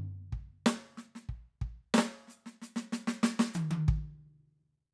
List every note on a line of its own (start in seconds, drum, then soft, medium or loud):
0.33 kick soft
0.67 snare loud
0.98 snare soft
1.16 snare soft
1.29 kick soft
1.62 kick medium
1.95 snare loud
1.99 snare loud
2.28 snare soft
2.28 hi-hat pedal medium
2.47 snare soft
2.62 snare soft
2.62 hi-hat pedal medium
2.77 snare medium
2.93 snare medium
2.93 hi-hat pedal medium
3.08 snare medium
3.24 snare loud
3.24 hi-hat pedal medium
3.40 snare loud
3.54 hi-hat pedal medium
3.54 high tom loud
3.71 high tom loud
3.89 kick medium